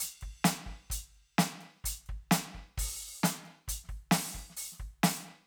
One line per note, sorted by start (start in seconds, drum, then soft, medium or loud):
0.01 closed hi-hat loud
0.01 snare soft
0.22 kick soft
0.22 closed hi-hat soft
0.45 closed hi-hat loud
0.45 snare loud
0.67 kick soft
0.90 closed hi-hat loud
0.90 kick medium
0.90 snare soft
1.15 closed hi-hat soft
1.39 closed hi-hat loud
1.39 snare loud
1.61 closed hi-hat soft
1.76 snare soft
1.85 closed hi-hat loud
1.85 kick medium
2.00 snare soft
2.07 kick medium
2.07 closed hi-hat soft
2.32 closed hi-hat loud
2.32 snare loud
2.55 kick soft
2.78 open hi-hat loud
2.78 kick medium
3.20 hi-hat pedal soft
3.24 closed hi-hat loud
3.24 snare loud
3.44 snare soft
3.44 closed hi-hat soft
3.69 closed hi-hat loud
3.69 kick medium
3.85 snare soft
3.90 kick soft
3.90 open hi-hat soft
4.12 open hi-hat loud
4.12 snare loud
4.35 kick soft
4.35 open hi-hat soft
4.50 snare soft
4.57 open hi-hat loud
4.73 snare soft
4.79 kick soft
4.79 open hi-hat soft
5.04 open hi-hat loud
5.04 snare loud